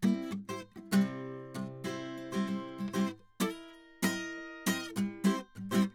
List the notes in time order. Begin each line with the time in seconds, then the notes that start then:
0.04 G3 A#3 E4
0.15 C4
0.49 E4 F#4 C5
0.77 E4 F#4
0.93 C3 G3 C4
1.55 C3 G3
1.85 C4 E4 F#4 C5
2.18 C4
2.33 C3 G3 C4 E4 G4 C5
2.48 G3 C4 E4
2.79 C3 G3
2.94 C3 G3 C4 E4 G4 C5
3.08 E4
3.41 B3 E4 A#4 D#5
4.04 C4 E4 A#4 D#5
4.67 C4 E4 A#4 D#5
4.96 C3 G3
5.25 G3 C4 E4 G4 C5
5.57 G3
5.72 B2 G3 C4 E4 F#4 C5